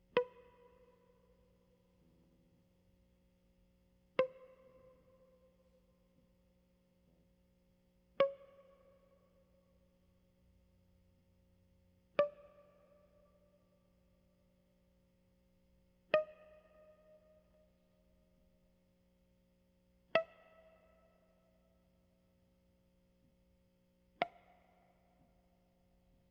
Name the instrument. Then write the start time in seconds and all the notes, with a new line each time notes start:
electric guitar
0.17 B4
4.20 C5
8.21 C#5
12.20 D5
16.14 D#5
20.16 E5
24.22 F5